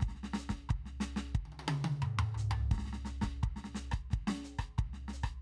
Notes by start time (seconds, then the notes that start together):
0.01 kick, snare
0.09 snare
0.15 snare
0.24 snare
0.34 snare
0.39 hi-hat pedal
0.50 kick, snare
0.70 kick, floor tom
0.86 snare
1.01 snare, hi-hat pedal
1.17 snare
1.35 kick, high tom
1.46 high tom
1.53 high tom
1.60 high tom
1.69 high tom
1.85 high tom
2.02 hi-hat pedal, mid tom
2.19 mid tom
2.35 floor tom, hi-hat pedal
2.52 floor tom
2.72 kick, snare
2.79 snare
2.83 snare
2.86 snare
3.05 snare, hi-hat pedal
3.22 kick, snare
3.44 kick, floor tom
3.57 snare
3.65 snare
3.75 snare, hi-hat pedal
3.92 kick, cross-stick
4.11 kick, snare
4.28 snare
4.44 snare, hi-hat pedal
4.59 kick, cross-stick
4.79 kick, floor tom
4.94 snare
5.09 snare
5.14 hi-hat pedal
5.24 kick, cross-stick